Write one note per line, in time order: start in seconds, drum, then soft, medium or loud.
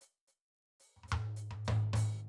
0.01 hi-hat pedal soft
0.27 hi-hat pedal soft
0.80 hi-hat pedal soft
0.96 high tom soft
1.03 high tom soft
1.07 hi-hat pedal soft
1.07 high tom soft
1.12 high tom loud
1.36 hi-hat pedal soft
1.51 high tom medium
1.65 hi-hat pedal soft
1.65 high tom loud
1.93 hi-hat pedal medium
1.93 high tom loud